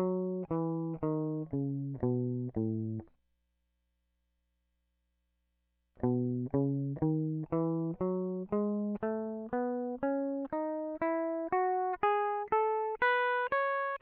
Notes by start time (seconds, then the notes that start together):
0.00 F#3
0.52 E3
1.04 D#3
1.55 C#3
2.05 B2
2.59 A2
6.05 B2
6.56 C#3
7.03 D#3
7.54 E3
8.02 F#3
8.53 G#3
9.04 A3
9.54 B3
10.04 C#4
10.53 D#4
11.02 E4
11.53 F#4
12.04 G#4
12.53 A4
13.02 B4
13.53 C#5